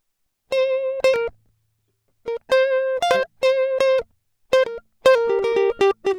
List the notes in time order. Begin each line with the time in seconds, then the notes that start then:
0.53 C5
1.05 C5
1.15 A#4
2.29 A#4
2.52 C5
3.03 F5
3.11 C5 E5
3.44 C5
3.81 C5
4.54 C5
4.64 A#4
5.06 C5
5.16 A#4
5.31 G4
5.45 A#4
5.57 G4
5.82 G4
6.07 G4